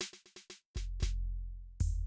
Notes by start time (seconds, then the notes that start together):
0.00 snare, hi-hat pedal
0.13 snare
0.26 snare
0.36 snare
0.50 snare
0.75 kick, snare
0.77 snare
1.00 kick, snare
1.03 snare
1.80 open hi-hat, kick, floor tom